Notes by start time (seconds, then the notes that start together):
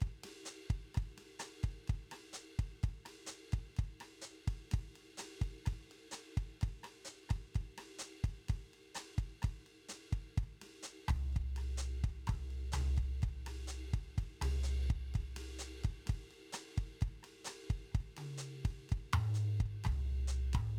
0.01 kick, ride
0.07 kick
0.14 snare
0.24 snare, ride
0.45 hi-hat pedal, ride
0.70 kick, ride
0.94 kick, cross-stick, snare, ride
1.02 kick
1.17 snare, ride
1.39 cross-stick, hi-hat pedal, ride
1.63 kick, ride
1.88 kick, ride
1.94 kick
2.12 cross-stick, ride
2.33 hi-hat pedal, ride
2.59 kick, ride
2.83 kick, ride
2.89 kick
3.06 cross-stick, ride
3.27 hi-hat pedal, ride
3.53 kick, ride
3.58 kick
3.77 kick, ride
3.84 kick
4.00 cross-stick, ride
4.22 hi-hat pedal, ride
4.48 kick, ride
4.72 kick, snare, ride
4.79 kick
4.96 ride
5.18 cross-stick, snare, hi-hat pedal, ride
5.42 kick, ride
5.66 kick, cross-stick, ride
5.72 kick
5.91 ride
6.11 cross-stick, snare, hi-hat pedal, ride
6.37 kick, ride
6.62 kick, cross-stick, ride
6.68 kick
6.84 cross-stick, ride
7.05 hi-hat pedal
7.09 ride
7.30 kick, cross-stick, ride
7.36 kick
7.55 kick, ride
7.61 kick
7.78 cross-stick, ride
7.99 hi-hat pedal, ride
8.24 kick, ride
8.29 kick
8.49 kick, snare, ride
8.55 kick
8.74 ride
8.95 cross-stick, hi-hat pedal, ride
9.18 kick, ride
9.42 kick, cross-stick, snare, ride
9.49 kick
9.66 ride
9.89 snare, hi-hat pedal, ride
10.13 kick, ride
10.38 kick, ride
10.43 kick
10.62 snare, ride
10.83 hi-hat pedal, ride
11.08 kick, floor tom, ride
11.16 kick
11.33 kick, ride
11.41 kick
11.56 cross-stick, ride
11.78 hi-hat pedal, ride
12.04 kick, ride
12.09 kick
12.27 kick, floor tom, ride
12.34 kick
12.51 ride
12.72 floor tom, hi-hat pedal, ride
12.97 kick, ride
13.02 kick, snare
13.22 kick, ride
13.28 kick
13.47 cross-stick, snare, ride
13.68 hi-hat pedal, ride
13.94 kick, ride
14.18 kick, ride
14.23 kick
14.42 floor tom, ride
14.64 hi-hat pedal, ride
14.76 snare
14.90 kick, ride
14.95 kick
15.14 kick, ride
15.20 kick
15.36 snare, ride
15.59 hi-hat pedal, ride
15.84 kick, ride
15.90 kick
16.06 kick, snare, ride
16.14 kick
16.31 ride
16.53 cross-stick, snare, hi-hat pedal, ride
16.78 kick, ride
17.01 kick, ride
17.08 kick
17.23 cross-stick, snare, ride
17.45 cross-stick, hi-hat pedal, ride
17.70 kick, ride
17.92 kick, mid tom, ride
18.00 kick
18.17 high tom, ride
18.38 hi-hat pedal
18.42 ride
18.65 kick, ride
18.70 kick
18.89 kick, ride
18.97 kick
19.13 mid tom, ride
19.34 hi-hat pedal
19.60 kick, ride
19.66 kick
19.84 kick, floor tom, ride
19.92 kick
20.28 hi-hat pedal, ride
20.53 kick, mid tom, ride
20.60 kick